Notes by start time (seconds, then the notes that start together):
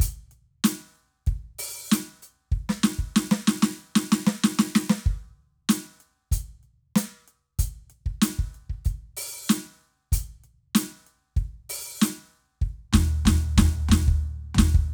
0.01 closed hi-hat, kick
0.32 closed hi-hat
0.65 closed hi-hat, snare
0.96 closed hi-hat
1.28 kick, closed hi-hat
1.60 open hi-hat
1.93 open hi-hat, snare, hi-hat pedal
2.24 closed hi-hat
2.53 kick
2.71 snare
2.85 snare
3.00 kick
3.17 snare
3.33 snare
3.49 snare
3.64 snare
3.79 hi-hat pedal
3.97 snare
4.13 snare
4.28 snare
4.45 snare
4.60 snare
4.76 snare
4.91 snare
5.07 kick
5.70 closed hi-hat, snare
6.01 closed hi-hat
6.33 closed hi-hat, kick
6.64 closed hi-hat
6.97 closed hi-hat, snare
7.29 closed hi-hat
7.60 closed hi-hat, kick
7.91 closed hi-hat
8.07 kick
8.23 closed hi-hat, snare
8.40 kick
8.56 closed hi-hat
8.71 kick
8.86 closed hi-hat, kick
9.18 open hi-hat
9.50 closed hi-hat, snare, hi-hat pedal
10.13 closed hi-hat, kick
10.45 closed hi-hat
10.76 closed hi-hat, snare
11.08 closed hi-hat
11.38 kick, closed hi-hat
11.71 open hi-hat
12.03 open hi-hat, snare, hi-hat pedal
12.63 kick
12.94 kick, snare, floor tom
13.27 kick, snare, floor tom
13.59 kick, snare, floor tom
13.90 kick, snare, floor tom
14.09 kick
14.56 kick, snare, floor tom
14.76 kick